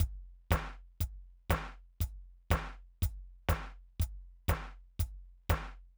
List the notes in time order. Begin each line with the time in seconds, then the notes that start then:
0.00 kick, open hi-hat
0.51 kick, snare, open hi-hat
1.00 kick, closed hi-hat
1.50 kick, snare, open hi-hat
2.00 kick, open hi-hat
2.50 kick, snare, open hi-hat
3.02 kick, open hi-hat
3.49 open hi-hat, kick, snare
4.00 kick, closed hi-hat
4.48 kick, snare, open hi-hat
4.99 kick, open hi-hat
5.49 open hi-hat, kick, snare